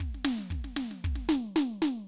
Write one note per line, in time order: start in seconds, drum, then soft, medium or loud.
0.00 kick soft
0.00 snare soft
0.14 snare soft
0.25 snare loud
0.38 snare soft
0.50 kick soft
0.50 snare soft
0.64 snare soft
0.76 snare loud
0.91 snare soft
1.04 kick medium
1.04 snare soft
1.15 snare soft
1.29 snare loud
1.56 snare loud
1.82 snare loud